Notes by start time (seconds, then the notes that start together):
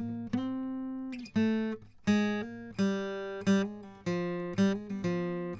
0.02 A#3
0.35 C4
1.37 A3
2.09 G#3
2.43 A#3
2.80 G3
3.48 G3
3.64 G#3
3.81 G3
3.98 G3
4.08 F3
4.59 G3
4.74 G#3
4.92 G3
5.02 F3 B3